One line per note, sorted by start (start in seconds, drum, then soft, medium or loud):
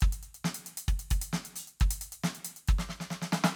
0.01 kick loud
0.01 closed hi-hat medium
0.13 closed hi-hat medium
0.23 closed hi-hat medium
0.35 closed hi-hat medium
0.45 snare loud
0.55 closed hi-hat medium
0.66 closed hi-hat medium
0.78 closed hi-hat loud
0.88 kick loud
0.88 closed hi-hat medium
1.00 closed hi-hat medium
1.11 kick loud
1.11 closed hi-hat medium
1.22 closed hi-hat loud
1.33 snare loud
1.45 closed hi-hat medium
1.56 closed hi-hat loud
1.68 closed hi-hat medium
1.80 kick loud
1.80 closed hi-hat medium
1.91 closed hi-hat loud
2.01 closed hi-hat loud
2.12 closed hi-hat medium
2.24 snare loud
2.35 closed hi-hat medium
2.45 closed hi-hat loud
2.57 closed hi-hat medium
2.68 kick loud
2.68 closed hi-hat medium
2.79 snare medium
2.89 snare medium
3.01 snare medium
3.11 snare medium
3.22 snare medium
3.33 snare loud
3.44 snare loud